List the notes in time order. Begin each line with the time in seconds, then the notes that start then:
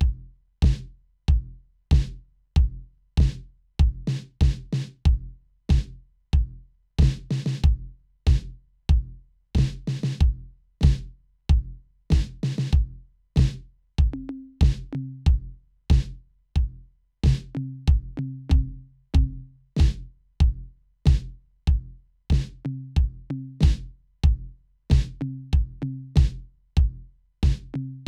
0.03 kick
0.64 kick, snare
1.30 kick
1.93 kick, snare
2.58 kick
3.19 kick, snare
3.81 kick
4.09 snare
4.43 kick, snare
4.75 snare
5.07 kick
5.71 kick, snare
6.35 kick
7.01 kick, snare
7.05 snare
7.33 snare
7.48 snare
7.66 kick
8.29 kick, snare
8.91 kick
9.57 kick, snare
9.61 snare
9.89 snare
10.05 snare
10.23 kick
10.83 kick, snare
10.86 snare
11.51 kick
12.12 kick, snare
12.14 snare
12.45 snare
12.60 snare
12.75 kick
13.38 kick, snare
13.41 snare
14.00 kick
14.16 high tom
14.31 high tom
14.63 kick, snare
14.95 floor tom, high tom
15.28 kick
15.92 kick, snare
16.58 kick
17.26 kick, snare
17.28 snare
17.57 floor tom, high tom
17.90 kick
18.19 floor tom, high tom
18.52 kick, floor tom, high tom
19.16 kick, floor tom, high tom
19.79 snare
19.81 kick, snare
20.42 kick
21.08 kick, snare
21.69 kick
22.32 kick, snare
22.67 floor tom, high tom
22.98 kick
23.32 floor tom, high tom
23.63 snare
23.65 kick, snare
24.26 kick
24.92 kick, snare
24.94 snare
25.23 floor tom, high tom
25.55 kick
25.84 floor tom, high tom
26.18 kick, snare
26.79 kick
27.45 kick, snare
27.76 floor tom, high tom